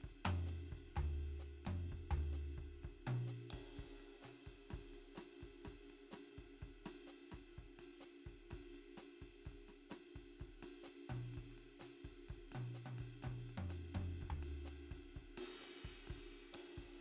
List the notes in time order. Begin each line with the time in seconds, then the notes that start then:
0.01 kick, ride
0.09 kick
0.25 mid tom, ride
0.46 hi-hat pedal
0.72 kick, ride
0.77 kick
0.96 kick, floor tom, ride
1.04 kick
1.39 hi-hat pedal, ride
1.65 kick, mid tom, ride
1.72 kick
1.92 kick
1.97 kick
2.11 floor tom, ride
2.32 hi-hat pedal
2.36 ride
2.58 kick, ride
2.63 kick
2.83 kick, ride
2.89 kick
3.07 high tom, ride
3.27 hi-hat pedal
3.31 ride
3.50 kick, crash, ride
3.58 kick
3.77 kick, ride
3.84 kick
4.00 ride
4.22 snare, hi-hat pedal, ride
4.46 kick, ride
4.70 kick, cross-stick, ride
4.79 kick
4.94 ride
5.15 cross-stick, snare, hi-hat pedal, ride
5.41 kick, ride
5.64 kick, cross-stick, snare, ride
5.72 kick
5.90 ride
6.11 cross-stick, snare, hi-hat pedal, ride
6.30 snare
6.38 kick, ride
6.62 kick, ride
6.67 kick
6.85 cross-stick, snare, ride
7.07 hi-hat pedal
7.31 kick, cross-stick, ride
7.56 kick, ride
7.63 kick
7.79 snare, ride
8.00 hi-hat pedal, ride
8.26 kick, ride
8.31 kick
8.50 kick, cross-stick, ride
8.58 kick
8.74 ride
8.97 cross-stick, hi-hat pedal, ride
9.21 kick, ride
9.45 kick, ride
9.51 kick
9.68 cross-stick, ride
9.90 cross-stick, hi-hat pedal, ride
10.15 kick, ride
10.40 kick, ride
10.46 kick
10.63 cross-stick, ride
10.83 hi-hat pedal
10.88 ride
11.09 kick, high tom, ride
11.16 kick
11.34 kick, ride
11.42 kick
11.49 snare
11.58 ride
11.79 snare, hi-hat pedal, ride
12.04 kick, ride
12.09 kick
12.28 kick, ride
12.35 kick
12.52 high tom, ride
12.74 hi-hat pedal, ride
12.86 high tom
12.98 kick, ride
13.05 kick
13.22 kick, high tom, ride
13.32 kick
13.49 ride
13.57 mid tom
13.69 hi-hat pedal, ride
13.94 kick, mid tom, ride
14.01 kick
14.21 kick, ride
14.27 kick, floor tom
14.43 ride
14.65 hi-hat pedal, ride
14.91 kick, ride
14.96 kick
15.16 kick, ride
15.21 kick
15.37 ride, crash
15.61 hi-hat pedal, ride
15.84 kick, ride
15.90 kick
16.07 kick, ride
16.15 kick
16.32 ride
16.53 hi-hat pedal, crash, ride
16.77 kick, ride
16.82 kick